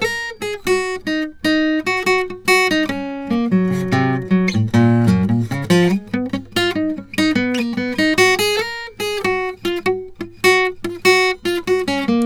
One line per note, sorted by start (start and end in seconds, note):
0.03 0.38 A#4
0.44 0.63 G#4
0.68 1.03 F#4
1.08 1.35 D#4
1.46 1.84 D#4
1.88 2.04 F#4
2.08 2.28 F#4
2.32 2.45 F#4
2.49 2.74 F#4
2.73 2.89 D#4
2.91 3.41 C#4
3.54 4.33 F#3
3.72 3.90 C#3
3.94 4.29 C3
4.33 4.55 F#3
4.56 4.73 A2
4.75 5.20 A#2
5.09 5.29 F#2
5.31 5.48 A#2
5.53 5.70 C#3
5.72 5.91 F3
5.93 6.13 G#3
6.15 6.31 B3
6.35 6.49 C4
6.58 6.72 F4
6.72 7.00 D#4
7.00 7.15 C#4
7.20 7.38 D#4
7.37 7.57 B3
7.57 7.63 A#3
7.79 7.98 B3
8.00 8.15 D#4
8.15 8.26 D#4
8.20 8.39 F#4
8.41 8.57 G#4
8.57 8.92 A#4
9.02 9.24 G#4
9.26 9.59 F#4
9.66 9.83 F4
9.87 10.13 F#4
10.22 10.39 E4
10.46 10.75 F#4
10.86 11.02 F4
11.06 11.38 F#4
11.47 11.65 F4
11.69 11.87 F#4
11.89 12.14 C#4
12.10 12.26 A#3